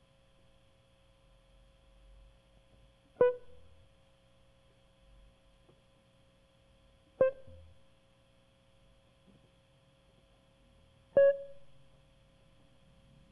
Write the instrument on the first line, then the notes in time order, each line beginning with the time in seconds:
electric guitar
3.21 B4
7.21 C5
11.17 C#5